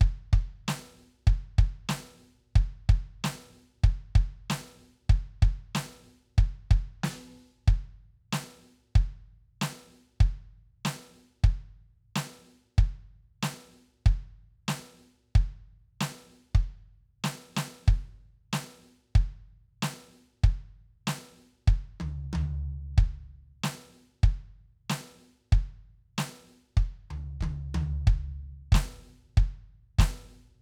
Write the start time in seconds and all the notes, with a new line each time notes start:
0.01 kick
0.33 kick
0.68 snare
1.27 kick
1.59 kick
1.89 snare
2.56 kick
2.89 kick
3.24 snare
3.84 kick
4.15 kick
4.50 snare
5.10 kick
5.42 kick
5.75 snare
6.38 kick
6.71 kick
7.04 snare
7.68 kick
8.33 snare
8.95 kick
9.61 snare
10.20 kick
10.85 snare
11.44 kick
12.16 snare
12.78 kick
13.43 snare
14.06 kick
14.68 snare
15.35 kick
16.01 snare
16.55 kick
17.24 snare
17.57 snare
17.88 kick
18.53 snare
19.15 kick
19.82 snare
20.44 kick
21.07 snare
21.68 kick
22.00 floor tom, high tom
22.33 floor tom, high tom
22.98 kick
23.64 snare
24.23 kick
24.90 snare
25.52 kick
26.18 snare
26.77 kick
27.03 kick
27.11 floor tom, high tom
27.41 kick, floor tom, high tom
27.75 floor tom, high tom
28.07 kick
28.72 kick, snare
29.37 kick
29.99 kick, snare